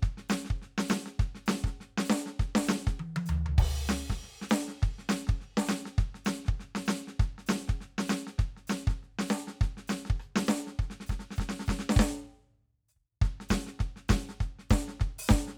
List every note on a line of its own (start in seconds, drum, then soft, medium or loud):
0.02 kick loud
0.02 snare soft
0.17 snare soft
0.29 snare loud
0.29 hi-hat pedal medium
0.45 snare soft
0.50 kick medium
0.62 snare soft
0.78 snare loud
0.88 snare loud
0.88 hi-hat pedal medium
1.06 snare soft
1.19 kick loud
1.19 snare soft
1.35 snare soft
1.46 snare loud
1.46 hi-hat pedal medium
1.64 kick medium
1.64 snare soft
1.80 snare soft
1.97 snare loud
2.05 hi-hat pedal medium
2.10 snare loud
2.26 snare medium
2.39 kick medium
2.39 snare soft
2.55 snare loud
2.66 snare loud
2.66 hi-hat pedal medium
2.87 kick loud
2.87 snare soft
2.99 high tom medium
3.16 high tom loud
3.26 floor tom loud
3.26 hi-hat pedal medium
3.46 floor tom loud
3.53 kick soft
3.58 kick loud
3.58 crash loud
3.87 snare loud
3.87 hi-hat pedal medium
4.09 kick medium
4.09 snare medium
4.23 snare soft
4.41 snare medium
4.49 snare loud
4.49 hi-hat pedal medium
4.68 snare soft
4.82 kick loud
4.82 snare soft
4.98 snare soft
5.09 snare loud
5.09 hi-hat pedal medium
5.27 kick loud
5.27 snare soft
5.40 snare soft
5.57 snare loud
5.67 snare loud
5.67 hi-hat pedal medium
5.85 snare medium
5.98 kick loud
5.98 snare soft
6.14 snare soft
6.25 snare loud
6.25 hi-hat pedal medium
6.45 kick loud
6.45 snare soft
6.59 snare soft
6.75 snare medium
6.85 snare loud
6.85 hi-hat pedal medium
7.07 snare soft
7.19 kick loud
7.19 snare soft
7.37 kick soft
7.37 snare soft
7.46 snare loud
7.46 hi-hat pedal medium
7.68 kick medium
7.68 snare soft
7.81 snare soft
7.98 snare loud
8.08 snare loud
8.08 hi-hat pedal medium
8.27 snare soft
8.38 kick loud
8.38 snare soft
8.56 snare soft
8.67 snare loud
8.67 hi-hat pedal medium
8.87 kick loud
8.87 snare soft
9.03 snare soft
9.19 snare loud
9.28 snare loud
9.28 hi-hat pedal medium
9.47 snare medium
9.61 kick loud
9.61 snare soft
9.77 snare soft
9.87 snare loud
9.87 hi-hat pedal medium
10.05 snare soft
10.10 kick loud
10.19 cross-stick soft
10.36 snare loud
10.47 snare loud
10.47 hi-hat pedal medium
10.67 snare soft
10.79 kick medium
10.79 snare soft
10.90 snare soft
11.06 kick medium
11.06 hi-hat pedal medium
11.10 snare soft
11.19 snare soft
11.30 snare medium
11.36 kick medium
11.36 hi-hat pedal medium
11.40 snare medium
11.49 snare medium
11.59 snare medium
11.66 kick medium
11.66 snare medium
11.66 hi-hat pedal medium
11.79 snare medium
11.89 snare loud
11.94 kick loud
11.94 hi-hat pedal soft
11.99 snare loud
12.88 hi-hat pedal soft
12.96 kick soft
13.21 kick loud
13.21 snare soft
13.40 snare soft
13.49 kick medium
13.49 snare loud
13.49 hi-hat pedal medium
13.66 snare soft
13.79 kick medium
13.79 snare soft
13.96 snare soft
14.08 kick loud
14.08 snare loud
14.08 hi-hat pedal medium
14.29 snare soft
14.40 kick medium
14.40 snare soft
14.59 snare soft
14.70 kick loud
14.70 snare loud
14.70 hi-hat pedal medium
14.88 snare soft
15.00 kick loud
15.00 snare soft
15.18 open hi-hat loud
15.28 kick loud
15.28 snare loud
15.28 hi-hat pedal medium
15.47 snare soft